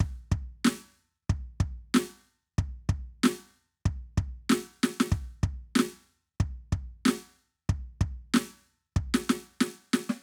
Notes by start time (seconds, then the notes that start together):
0.01 kick
0.32 kick
0.65 snare
0.68 snare
1.30 kick
1.61 kick
1.95 snare
1.97 snare
2.59 kick
2.90 kick
3.24 snare
3.26 snare
3.86 kick
4.18 kick
4.50 snare
4.53 snare
4.84 snare
5.01 snare
5.13 kick
5.44 kick
5.76 snare
5.80 snare
6.41 kick
6.73 kick
7.06 snare
7.09 snare
7.70 kick
8.02 kick
8.35 snare
8.37 snare
8.97 kick
9.15 snare
9.30 snare
9.61 snare
9.94 snare
10.10 snare